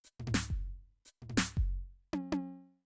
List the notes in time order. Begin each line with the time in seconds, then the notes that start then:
0.04 hi-hat pedal
0.20 floor tom
0.27 floor tom
0.34 snare
0.50 kick
1.05 hi-hat pedal
1.22 floor tom
1.29 floor tom
1.37 snare
1.57 kick
2.13 high tom
2.32 high tom